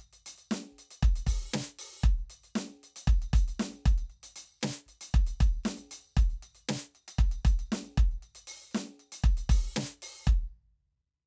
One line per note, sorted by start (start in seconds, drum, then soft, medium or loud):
0.01 closed hi-hat medium
0.14 closed hi-hat medium
0.27 closed hi-hat loud
0.39 closed hi-hat medium
0.52 snare loud
0.67 closed hi-hat soft
0.73 kick soft
0.79 closed hi-hat medium
0.92 closed hi-hat medium
1.04 kick loud
1.04 closed hi-hat medium
1.17 closed hi-hat medium
1.28 kick medium
1.28 percussion loud
1.43 percussion soft
1.53 snare loud
1.53 hi-hat pedal soft
1.67 closed hi-hat soft
1.80 percussion loud
1.94 percussion soft
2.02 kick loud
2.02 hi-hat pedal soft
2.07 closed hi-hat soft
2.19 closed hi-hat soft
2.31 closed hi-hat medium
2.44 closed hi-hat soft
2.56 snare loud
2.71 closed hi-hat soft
2.84 closed hi-hat medium
2.97 closed hi-hat loud
3.08 kick loud
3.08 closed hi-hat soft
3.23 closed hi-hat medium
3.34 closed hi-hat medium
3.34 kick loud
3.49 closed hi-hat medium
3.60 snare loud
3.74 closed hi-hat soft
3.87 closed hi-hat medium
3.87 kick loud
3.99 closed hi-hat medium
4.11 closed hi-hat soft
4.24 closed hi-hat loud
4.37 percussion loud
4.49 percussion soft
4.62 snare loud
4.62 hi-hat pedal soft
4.76 closed hi-hat soft
4.87 closed hi-hat medium
4.87 kick soft
5.02 closed hi-hat loud
5.15 kick loud
5.15 closed hi-hat soft
5.28 closed hi-hat medium
5.41 kick loud
5.41 percussion medium
5.65 snare loud
5.65 hi-hat pedal soft
5.78 closed hi-hat medium
5.92 closed hi-hat loud
6.18 closed hi-hat medium
6.18 kick loud
6.31 closed hi-hat soft
6.43 closed hi-hat medium
6.56 closed hi-hat soft
6.70 snare loud
6.83 closed hi-hat soft
6.96 closed hi-hat medium
7.09 closed hi-hat loud
7.19 kick loud
7.19 closed hi-hat soft
7.32 closed hi-hat medium
7.46 closed hi-hat medium
7.46 kick loud
7.60 closed hi-hat medium
7.73 snare loud
7.86 closed hi-hat soft
7.99 kick loud
7.99 closed hi-hat soft
8.12 closed hi-hat soft
8.23 closed hi-hat medium
8.36 closed hi-hat medium
8.48 percussion loud
8.62 percussion soft
8.72 snare loud
8.72 hi-hat pedal soft
8.88 closed hi-hat soft
9.00 closed hi-hat medium
9.13 closed hi-hat loud
9.25 kick loud
9.25 closed hi-hat soft
9.38 closed hi-hat medium
9.50 kick loud
9.50 percussion loud
9.66 percussion soft
9.76 snare loud
9.76 hi-hat pedal soft
9.91 closed hi-hat soft
10.03 percussion loud
10.25 kick loud
10.25 hi-hat pedal soft